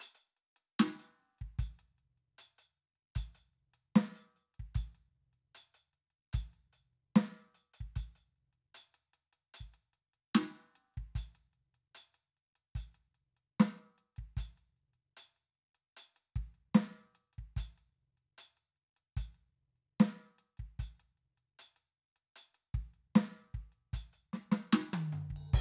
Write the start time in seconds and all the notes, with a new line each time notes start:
0.01 closed hi-hat
0.15 closed hi-hat
0.37 closed hi-hat
0.57 closed hi-hat
0.80 snare
1.00 closed hi-hat
1.39 kick, closed hi-hat
1.59 closed hi-hat, kick
1.80 closed hi-hat
1.99 closed hi-hat
2.18 closed hi-hat
2.39 closed hi-hat
2.59 closed hi-hat
2.78 closed hi-hat
2.96 closed hi-hat
3.16 closed hi-hat, kick
3.35 closed hi-hat
3.54 closed hi-hat
3.74 closed hi-hat
3.96 snare
4.16 closed hi-hat
4.37 closed hi-hat
4.55 closed hi-hat
4.60 kick
4.75 closed hi-hat, kick
4.95 closed hi-hat
5.33 closed hi-hat
5.55 closed hi-hat
5.75 closed hi-hat
5.94 closed hi-hat
6.11 closed hi-hat
6.33 closed hi-hat, kick
6.44 kick
6.54 closed hi-hat
6.73 closed hi-hat
6.94 closed hi-hat
7.16 snare
7.55 closed hi-hat
7.74 closed hi-hat
7.81 kick
7.96 closed hi-hat, kick
8.16 closed hi-hat
8.37 closed hi-hat
8.53 closed hi-hat
8.75 closed hi-hat
8.95 closed hi-hat
9.14 closed hi-hat
9.33 closed hi-hat
9.54 closed hi-hat
9.61 kick
9.74 closed hi-hat
9.94 closed hi-hat
10.14 closed hi-hat
10.35 snare
10.54 closed hi-hat
10.76 closed hi-hat
10.95 kick, closed hi-hat
11.16 closed hi-hat, kick
11.36 closed hi-hat
11.54 closed hi-hat
11.75 closed hi-hat
11.95 closed hi-hat
12.15 closed hi-hat
12.37 closed hi-hat
12.56 closed hi-hat
12.76 closed hi-hat, kick
12.95 closed hi-hat
13.15 closed hi-hat
13.37 closed hi-hat
13.60 snare
13.78 closed hi-hat
13.99 closed hi-hat
14.17 kick, closed hi-hat
14.37 closed hi-hat, kick
14.58 closed hi-hat
14.77 closed hi-hat
14.94 closed hi-hat
15.17 closed hi-hat
15.37 closed hi-hat
15.56 closed hi-hat
15.75 closed hi-hat
15.97 closed hi-hat
16.17 closed hi-hat
16.36 kick, closed hi-hat
16.55 closed hi-hat
16.75 snare
16.93 closed hi-hat
17.16 closed hi-hat
17.34 closed hi-hat
17.39 kick
17.57 closed hi-hat, kick
17.78 closed hi-hat
18.18 closed hi-hat
18.39 closed hi-hat
18.58 closed hi-hat
18.77 closed hi-hat
18.97 closed hi-hat
19.17 closed hi-hat, kick
19.35 closed hi-hat
19.76 closed hi-hat
20.01 snare
20.20 closed hi-hat
20.39 closed hi-hat
20.58 kick, closed hi-hat
20.80 closed hi-hat, kick
21.00 closed hi-hat
21.18 closed hi-hat
21.38 closed hi-hat
21.60 closed hi-hat
21.77 closed hi-hat
22.17 closed hi-hat
22.36 closed hi-hat
22.55 closed hi-hat
22.75 kick, closed hi-hat
22.94 closed hi-hat
23.16 snare
23.34 closed hi-hat
23.55 kick, closed hi-hat
23.73 closed hi-hat
23.94 closed hi-hat, kick
24.14 closed hi-hat
24.34 snare
24.52 snare
24.73 snare
24.94 high tom
25.13 floor tom
25.31 kick
25.37 crash
25.54 kick, crash